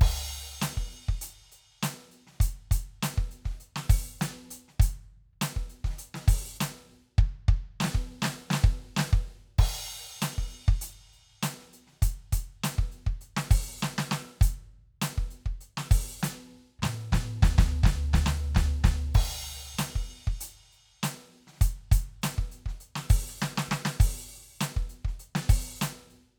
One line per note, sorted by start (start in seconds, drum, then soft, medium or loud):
0.01 kick loud
0.01 crash loud
0.62 closed hi-hat loud
0.62 snare loud
0.77 kick medium
0.92 closed hi-hat soft
1.08 kick medium
1.08 crash soft
1.21 closed hi-hat loud
1.52 closed hi-hat medium
1.83 closed hi-hat loud
1.83 snare loud
2.11 closed hi-hat soft
2.27 snare soft
2.32 snare soft
2.36 snare soft
2.40 closed hi-hat loud
2.40 kick loud
2.40 snare soft
2.71 closed hi-hat loud
2.71 kick loud
3.03 closed hi-hat loud
3.03 snare loud
3.18 kick medium
3.31 closed hi-hat soft
3.45 kick medium
3.45 snare soft
3.49 snare soft
3.49 crash soft
3.52 snare soft
3.60 closed hi-hat soft
3.76 snare loud
3.90 open hi-hat loud
3.90 kick loud
4.19 closed hi-hat loud
4.19 snare loud
4.19 hi-hat pedal soft
4.45 kick soft
4.51 closed hi-hat loud
4.68 snare soft
4.80 closed hi-hat loud
4.80 kick loud
5.33 kick soft
5.41 closed hi-hat loud
5.41 snare loud
5.56 kick medium
5.70 closed hi-hat soft
5.84 kick medium
5.84 snare soft
5.89 snare soft
5.92 snare soft
5.95 closed hi-hat medium
5.95 snare soft
6.14 snare medium
6.28 open hi-hat loud
6.28 kick loud
6.56 hi-hat pedal soft
6.61 closed hi-hat loud
6.61 snare loud
7.18 kick loud
7.48 kick loud
7.80 snare loud
7.84 snare loud
7.95 kick medium
8.22 snare loud
8.24 snare loud
8.50 snare loud
8.53 snare loud
8.64 kick loud
8.96 snare loud
8.99 snare loud
9.13 kick loud
9.59 kick loud
9.59 crash loud
10.22 closed hi-hat loud
10.22 snare loud
10.38 kick medium
10.50 closed hi-hat soft
10.68 kick loud
10.81 closed hi-hat loud
11.13 closed hi-hat soft
11.43 closed hi-hat loud
11.43 snare loud
11.61 snare soft
11.73 closed hi-hat soft
11.87 snare soft
11.91 snare soft
11.95 snare soft
12.02 closed hi-hat loud
12.02 kick loud
12.33 closed hi-hat loud
12.33 kick medium
12.64 closed hi-hat loud
12.64 snare loud
12.78 kick medium
12.92 closed hi-hat soft
13.06 kick medium
13.06 crash soft
13.11 ride soft
13.21 closed hi-hat medium
13.37 snare loud
13.51 open hi-hat loud
13.51 kick loud
13.80 snare loud
13.80 hi-hat pedal medium
13.98 snare loud
14.11 snare loud
14.41 closed hi-hat loud
14.41 kick loud
15.02 closed hi-hat loud
15.02 snare loud
15.18 kick medium
15.30 closed hi-hat soft
15.46 kick medium
15.50 ride soft
15.61 closed hi-hat medium
15.77 snare loud
15.91 open hi-hat loud
15.91 kick loud
16.21 closed hi-hat loud
16.21 snare loud
16.21 hi-hat pedal medium
16.79 kick soft
16.79 snare loud
16.79 mid tom loud
17.12 kick medium
17.12 snare loud
17.12 mid tom loud
17.43 kick loud
17.43 snare loud
17.43 floor tom loud
17.58 kick loud
17.58 snare loud
17.58 floor tom loud
17.84 kick loud
17.84 snare loud
17.84 floor tom loud
18.13 kick medium
18.13 snare loud
18.13 floor tom loud
18.26 snare loud
18.26 floor tom loud
18.55 kick loud
18.55 snare loud
18.55 floor tom loud
18.84 kick loud
18.84 snare loud
18.84 floor tom loud
19.15 kick loud
19.15 crash loud
19.75 closed hi-hat loud
19.75 kick soft
19.75 snare loud
19.96 kick medium
20.07 closed hi-hat soft
20.27 kick medium
20.41 closed hi-hat loud
20.72 closed hi-hat soft
21.03 closed hi-hat loud
21.03 snare loud
21.47 snare soft
21.53 snare soft
21.56 snare soft
21.60 closed hi-hat loud
21.60 kick loud
21.60 snare soft
21.92 closed hi-hat loud
21.92 kick loud
22.22 closed hi-hat loud
22.22 snare loud
22.22 hi-hat pedal soft
22.38 kick medium
22.52 closed hi-hat medium
22.66 kick medium
22.66 snare soft
22.76 snare soft
22.80 closed hi-hat medium
22.96 snare loud
23.10 open hi-hat loud
23.10 kick loud
23.29 cross-stick soft
23.41 snare loud
23.41 hi-hat pedal medium
23.57 snare loud
23.68 kick soft
23.68 snare loud
23.85 snare loud
24.00 open hi-hat loud
24.00 kick loud
24.51 kick soft
24.61 open hi-hat loud
24.61 snare loud
24.61 hi-hat pedal medium
24.77 kick medium
24.89 closed hi-hat soft
25.05 kick medium
25.05 snare soft
25.05 crash soft
25.20 closed hi-hat medium
25.35 snare loud
25.49 open hi-hat loud
25.49 kick loud
25.78 closed hi-hat loud
25.78 snare loud
25.78 hi-hat pedal medium
26.10 closed hi-hat soft